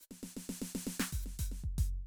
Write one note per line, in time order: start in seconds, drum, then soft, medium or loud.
0.00 hi-hat pedal medium
0.11 snare soft
0.23 snare soft
0.37 snare soft
0.49 snare medium
0.62 snare medium
0.75 snare medium
0.87 snare medium
1.00 snare medium
1.12 open hi-hat medium
1.12 kick soft
1.20 hi-hat pedal medium
1.26 snare soft
1.39 open hi-hat medium
1.39 kick soft
1.44 hi-hat pedal soft
1.52 snare soft
1.64 kick soft
1.78 open hi-hat medium
1.78 kick medium